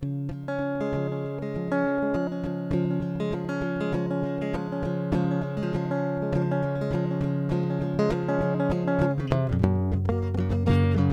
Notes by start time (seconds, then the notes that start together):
0.01 C#3 F3
0.30 C#3 F3
0.82 G#3
0.94 C#3 F3
1.26 F3
1.41 F3 G#3
1.56 F3
1.86 F3
2.04 G#3
2.15 F3
2.45 C#3 F3
2.72 C#3 F3
3.01 C#3 F3
3.21 G#3
3.33 F3 G#3
3.63 F3
3.82 G#3
3.93 C#3 F3
4.07 G#3
4.25 F3
4.43 G#3
4.55 F3 G#3
4.85 F3
5.13 C#3 F3 G#3 C#4
5.33 C#4
5.43 F3
5.59 G#3
5.64 F3
5.74 C#3 F3 G#3
5.92 C#4
6.34 C#3 F3 G#3
6.53 G#3 C#4
6.64 F3
6.83 G#3
6.92 C#3 F3 G#3
7.12 C#4
7.22 C#3 F3
7.50 C#3 F3
7.54 G#3
7.72 C#4
7.81 F3 G#3
8.00 F3 G#3
8.11 F3 G#3
8.28 C#3 G#3 C#4
8.43 F3
8.61 C#4
8.71 C#3 F3 G#3 C#4
8.89 C#4
9.00 C#3 F3 G#3
9.12 C4
9.20 C#3 D#3
9.33 C3 D#3
9.49 A#2
9.54 F#2
9.64 F#2 A#2
9.93 F#2 C3
10.10 F#3 A#3
10.20 A#3
10.36 A#3
10.41 F#2
10.52 F#2 C#3 A#3
10.68 F#2 C#3 A#3
10.86 C#3
10.96 F#2 C#3 F#3